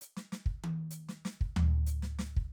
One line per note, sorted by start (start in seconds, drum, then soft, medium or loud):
0.01 hi-hat pedal medium
0.17 snare soft
0.32 snare soft
0.46 kick soft
0.64 high tom medium
0.91 hi-hat pedal medium
1.09 snare soft
1.25 snare soft
1.41 kick soft
1.56 floor tom loud
1.87 hi-hat pedal medium
2.03 snare soft
2.19 snare medium
2.37 kick soft